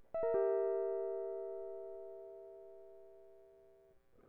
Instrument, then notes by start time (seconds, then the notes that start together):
electric guitar
0.15 E5
0.23 A#4
0.35 G4